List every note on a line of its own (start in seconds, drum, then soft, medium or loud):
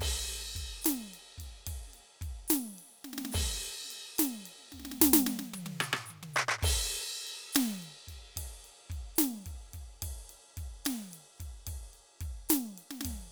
0.01 kick soft
0.01 crash loud
0.56 kick soft
0.56 ride medium
0.82 hi-hat pedal medium
0.82 ride loud
0.86 snare medium
1.11 hi-hat pedal soft
1.11 ride medium
1.38 kick soft
1.38 snare soft
1.38 ride medium
1.67 kick soft
1.67 ride loud
1.88 snare soft
1.93 snare soft
1.93 hi-hat pedal soft
1.93 ride soft
1.97 snare soft
2.22 kick soft
2.22 ride medium
2.48 snare medium
2.48 hi-hat pedal loud
2.48 ride medium
2.76 snare soft
2.76 ride soft
2.83 snare soft
3.05 snare soft
3.14 snare soft
3.18 snare medium
3.25 snare medium
3.32 kick medium
3.32 snare soft
3.32 hi-hat pedal loud
3.32 crash loud
3.41 kick soft
3.47 kick soft
3.54 snare soft
3.64 ride medium
3.81 snare soft
3.84 snare soft
3.91 ride medium
4.16 snare medium
4.16 hi-hat pedal medium
4.16 ride loud
4.46 ride medium
4.59 snare soft
4.70 snare soft
4.70 hi-hat pedal soft
4.74 kick soft
4.80 snare soft
4.85 snare soft
4.92 snare soft
4.97 kick soft
4.97 hi-hat pedal soft
5.02 snare loud
5.14 snare loud
5.27 snare medium
5.27 hi-hat pedal medium
5.39 snare medium
5.54 hi-hat pedal medium
5.54 high tom medium
5.66 high tom medium
5.81 cross-stick loud
5.81 hi-hat pedal loud
5.93 cross-stick loud
6.06 hi-hat pedal medium
6.11 mid tom soft
6.23 mid tom medium
6.34 percussion loud
6.34 hi-hat pedal medium
6.49 percussion loud
6.59 percussion soft
6.63 kick medium
6.63 hi-hat pedal loud
6.63 crash loud
6.75 kick soft
7.27 ride medium
7.53 snare loud
7.53 hi-hat pedal loud
7.53 ride loud
7.83 snare soft
7.83 ride soft
8.08 kick soft
8.08 ride medium
8.35 kick soft
8.35 hi-hat pedal soft
8.35 ride loud
8.65 hi-hat pedal soft
8.65 ride soft
8.90 kick soft
8.90 ride soft
9.16 snare loud
9.16 hi-hat pedal medium
9.16 ride loud
9.28 snare soft
9.45 kick soft
9.45 snare soft
9.45 ride medium
9.71 kick soft
9.71 hi-hat pedal soft
9.71 ride medium
10.03 kick soft
10.03 ride loud
10.08 kick soft
10.30 ride medium
10.57 kick soft
10.57 ride medium
10.85 snare medium
10.85 hi-hat pedal medium
10.85 ride loud
11.11 snare soft
11.11 hi-hat pedal soft
11.11 ride medium
11.36 hi-hat pedal soft
11.40 kick soft
11.40 ride medium
11.67 kick soft
11.67 ride loud
11.73 kick soft
11.94 ride soft
12.21 kick soft
12.21 ride medium
12.49 snare loud
12.49 hi-hat pedal loud
12.49 ride medium
12.78 ride medium
12.91 snare medium
13.01 kick soft
13.01 snare medium
13.01 ride loud